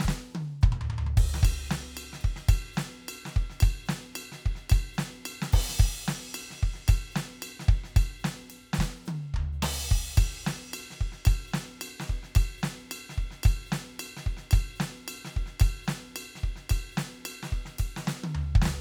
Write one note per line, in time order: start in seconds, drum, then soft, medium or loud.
0.01 snare loud
0.01 hi-hat pedal soft
0.06 kick medium
0.06 snare loud
0.36 high tom loud
0.62 kick loud
0.62 hi-hat pedal soft
0.62 mid tom loud
0.73 mid tom loud
0.82 floor tom loud
0.91 floor tom loud
0.99 floor tom loud
1.07 floor tom loud
1.18 kick loud
1.18 crash medium
1.35 snare medium
1.44 kick loud
1.44 ride bell loud
1.67 hi-hat pedal soft
1.72 snare loud
1.98 ride bell loud
2.14 snare medium
2.22 kick medium
2.22 ride soft
2.37 snare medium
2.49 kick loud
2.49 ride bell loud
2.74 snare loud
2.74 hi-hat pedal soft
3.09 ride bell loud
3.26 snare medium
3.37 kick loud
3.51 snare soft
3.61 kick loud
3.61 ride bell loud
3.86 snare loud
3.86 hi-hat pedal soft
4.16 ride bell loud
4.33 snare medium
4.47 kick medium
4.56 snare soft
4.71 kick loud
4.71 ride bell loud
4.94 hi-hat pedal soft
4.99 snare loud
5.26 ride bell loud
5.43 snare loud
5.54 kick loud
5.54 crash loud
5.70 snare medium
5.80 kick loud
5.80 ride bell medium
6.04 hi-hat pedal soft
6.09 snare loud
6.35 ride bell loud
6.51 snare medium
6.64 kick medium
6.74 snare soft
6.89 kick loud
6.89 ride bell loud
7.12 hi-hat pedal soft
7.17 snare loud
7.43 ride bell loud
7.60 snare medium
7.69 kick loud
7.85 snare medium
7.97 kick loud
7.97 ride bell loud
8.20 hi-hat pedal soft
8.25 snare loud
8.51 ride bell medium
8.74 snare loud
8.79 kick medium
8.79 snare loud
9.06 hi-hat pedal medium
9.06 high tom loud
9.35 kick medium
9.35 floor tom loud
9.53 hi-hat pedal soft
9.63 snare loud
9.63 crash loud
9.92 kick loud
10.04 snare soft
10.09 snare soft
10.18 kick loud
10.18 ride bell loud
10.43 hi-hat pedal soft
10.47 snare loud
10.74 ride bell loud
10.91 snare medium
11.02 kick medium
11.13 snare soft
11.26 kick loud
11.26 ride bell loud
11.48 hi-hat pedal soft
11.54 snare loud
11.82 ride bell loud
12.01 snare loud
12.10 kick medium
12.24 snare soft
12.36 kick loud
12.36 ride bell loud
12.59 hi-hat pedal soft
12.64 snare loud
12.92 ride bell loud
13.10 snare medium
13.19 kick medium
13.32 snare soft
13.44 kick loud
13.44 ride bell loud
13.67 hi-hat pedal soft
13.73 snare loud
14.00 ride bell loud
14.17 snare medium
14.27 kick medium
14.38 snare medium
14.52 kick loud
14.52 ride bell loud
14.76 hi-hat pedal soft
14.81 snare loud
15.09 ride bell loud
15.26 snare medium
15.37 kick medium
15.47 snare soft
15.61 kick loud
15.61 ride bell loud
15.84 hi-hat pedal soft
15.89 snare loud
16.17 ride bell loud
16.36 snare medium
16.44 kick medium
16.57 snare soft
16.70 kick loud
16.70 ride bell loud
16.93 hi-hat pedal soft
16.98 snare loud
17.26 ride bell loud
17.44 snare medium
17.53 kick medium
17.66 snare medium
17.79 kick medium
17.79 ride bell medium
17.97 snare loud
17.97 hi-hat pedal soft
18.08 snare loud
18.25 high tom loud
18.36 floor tom loud
18.56 kick loud
18.62 snare loud
18.66 snare loud